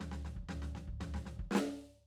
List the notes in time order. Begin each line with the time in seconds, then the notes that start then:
0.00 snare, floor tom
0.12 snare, floor tom
0.25 snare, floor tom
0.36 kick
0.49 snare, floor tom
0.62 snare, floor tom
0.75 snare, floor tom
0.87 kick
1.00 snare, floor tom
1.14 snare, floor tom
1.26 snare, floor tom
1.39 kick
1.51 snare
1.55 snare